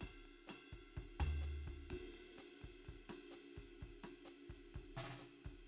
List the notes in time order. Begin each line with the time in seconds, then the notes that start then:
0.01 kick, cross-stick, ride bell
0.08 kick
0.25 ride
0.47 cross-stick, snare, hi-hat pedal, ride bell
0.73 kick, ride
0.97 kick, ride
1.03 kick
1.20 floor tom, ride bell
1.41 hi-hat pedal, ride
1.67 kick, ride
1.72 kick
1.90 kick, ride
1.98 kick
2.14 ride
2.38 hi-hat pedal, ride
2.62 kick, ride
2.85 kick, ride
2.93 kick
3.09 cross-stick, snare, ride
3.31 hi-hat pedal, ride
3.57 kick, ride
3.81 kick, ride
3.87 kick
4.03 cross-stick, snare, ride
4.25 hi-hat pedal, ride
4.50 kick, ride
4.55 kick
4.75 kick, ride
4.81 kick
4.97 snare, ride
5.04 snare
5.10 snare
5.16 snare, hi-hat pedal
5.22 snare, ride
5.27 snare
5.34 snare
5.39 snare
5.45 kick, ride
5.51 kick